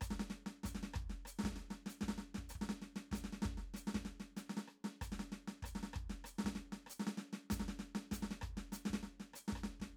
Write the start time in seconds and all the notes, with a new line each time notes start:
0.01 kick, cross-stick, hi-hat pedal
0.11 snare
0.20 snare
0.30 snare
0.46 snare
0.63 kick, snare, hi-hat pedal
0.75 snare
0.83 snare
0.94 kick, cross-stick
1.02 kick
1.10 snare
1.25 cross-stick, hi-hat pedal
1.39 snare
1.43 kick, snare
1.52 snare
1.56 snare
1.70 snare
1.86 snare, hi-hat pedal
2.01 kick, snare
2.08 snare
2.18 snare
2.34 kick, snare
2.49 cross-stick, hi-hat pedal
2.55 kick
2.61 snare
2.69 snare
2.82 snare
2.96 snare
3.11 kick, snare, hi-hat pedal
3.24 snare
3.33 snare
3.42 kick, snare
3.51 kick
3.57 snare
3.74 snare, hi-hat pedal
3.87 snare
3.94 kick, snare
4.05 snare
4.20 snare
4.37 snare, hi-hat pedal
4.49 snare
4.57 snare
4.68 cross-stick
4.84 snare
5.01 kick, cross-stick, hi-hat pedal
5.12 snare
5.19 snare
5.32 snare
5.48 snare
5.62 kick, cross-stick, hi-hat pedal
5.75 snare
5.83 snare
5.93 kick, cross-stick
6.10 snare
6.24 cross-stick, hi-hat pedal
6.39 snare
6.44 kick, snare
6.55 snare
6.72 snare
6.86 cross-stick, hi-hat pedal
7.00 snare
7.07 snare
7.17 snare
7.33 snare
7.50 kick, snare, hi-hat pedal
7.60 snare
7.68 snare
7.79 snare
7.95 snare
8.11 kick, snare, hi-hat pedal
8.22 snare
8.31 snare
8.41 kick, cross-stick
8.57 snare
8.72 snare, hi-hat pedal
8.85 snare
8.90 kick, snare
9.03 snare
9.20 snare
9.34 cross-stick, hi-hat pedal
9.48 snare
9.52 kick, cross-stick
9.64 snare
9.80 kick, snare